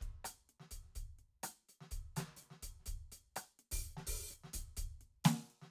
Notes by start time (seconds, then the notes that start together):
0.01 kick, closed hi-hat
0.24 closed hi-hat, cross-stick
0.49 closed hi-hat
0.60 snare
0.71 closed hi-hat, kick
0.83 snare
0.86 snare
0.89 snare
0.95 closed hi-hat, kick
1.19 closed hi-hat
1.43 closed hi-hat, cross-stick
1.69 closed hi-hat
1.80 snare
1.91 closed hi-hat, kick
2.16 closed hi-hat, snare
2.36 hi-hat pedal
2.42 closed hi-hat
2.50 snare
2.62 closed hi-hat, kick
2.79 snare
2.86 closed hi-hat, kick
3.12 closed hi-hat
3.36 closed hi-hat, cross-stick
3.59 closed hi-hat
3.71 open hi-hat, kick
3.90 hi-hat pedal
3.97 snare
4.07 open hi-hat, kick
4.30 hi-hat pedal
4.44 snare
4.53 closed hi-hat, kick
4.77 closed hi-hat, kick
4.83 kick
5.01 closed hi-hat
5.24 closed hi-hat, snare
5.43 hi-hat pedal
5.50 closed hi-hat
5.62 snare